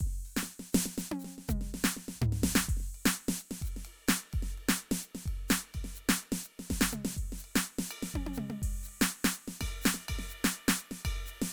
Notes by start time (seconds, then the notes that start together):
0.01 kick, crash
0.07 kick, snare
0.12 kick
0.26 open hi-hat
0.37 snare
0.43 snare, hi-hat pedal
0.60 snare
0.73 snare, hi-hat pedal
0.86 snare
0.98 snare, hi-hat pedal
1.12 high tom
1.20 hi-hat pedal
1.25 snare
1.39 snare
1.49 kick, hi-hat pedal, mid tom
1.56 kick
1.60 kick, snare
1.75 snare
1.85 snare, hi-hat pedal
1.97 snare
2.09 snare
2.15 kick
2.22 floor tom
2.33 snare
2.43 kick, snare
2.56 snare
2.62 hi-hat pedal
2.69 kick, crash
2.77 kick, snare
2.81 snare
2.95 ride bell
3.06 snare
3.12 hi-hat pedal
3.19 ride
3.29 snare
3.38 hi-hat pedal, ride
3.52 snare
3.62 kick, hi-hat pedal, ride
3.77 snare
3.85 ride
4.09 snare, ride
4.34 kick, ride
4.41 kick, snare
4.58 ride
4.69 snare
4.76 hi-hat pedal
4.82 ride
4.92 snare
5.02 hi-hat pedal, ride
5.15 snare
5.26 kick, ride
5.32 kick
5.36 kick
5.49 snare, hi-hat pedal, ride
5.75 kick, ride bell
5.81 kick, snare
5.95 hi-hat pedal
6.00 ride
6.09 snare
6.24 ride
6.33 snare
6.43 hi-hat pedal, ride
6.60 snare
6.71 kick, snare
6.79 kick, snare
6.91 hi-hat pedal, mid tom
7.05 snare
7.17 kick, crash
7.23 kick
7.26 kick
7.33 snare
7.38 hi-hat pedal
7.45 ride bell
7.56 snare, hi-hat pedal
7.67 ride
7.79 snare
7.89 hi-hat pedal, ride bell
8.03 snare
8.15 kick, high tom
8.20 kick
8.27 high tom
8.34 hi-hat pedal
8.38 mid tom
8.51 mid tom
8.63 kick, crash
8.69 kick
8.73 kick
8.84 hi-hat pedal
8.89 ride
9.02 snare, hi-hat pedal
9.15 ride
9.25 snare
9.33 hi-hat pedal
9.38 ride
9.48 snare
9.61 kick, snare, ride bell
9.68 kick
9.82 hi-hat pedal, ride
9.86 snare
9.95 snare
10.09 kick, ride bell
10.16 kick, snare
10.29 hi-hat pedal
10.34 ride
10.45 snare
10.52 hi-hat pedal
10.59 ride
10.69 snare
10.78 hi-hat pedal
10.82 ride
10.92 snare
11.06 kick, ride bell
11.12 kick
11.15 kick
11.26 hi-hat pedal
11.30 ride
11.42 snare